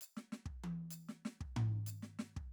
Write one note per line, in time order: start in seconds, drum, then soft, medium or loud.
0.01 percussion medium
0.17 snare soft
0.32 snare soft
0.46 kick soft
0.64 high tom medium
0.91 percussion medium
1.09 snare soft
1.25 snare soft
1.41 kick soft
1.56 floor tom loud
1.86 percussion medium
2.02 snare soft
2.19 snare medium
2.36 kick soft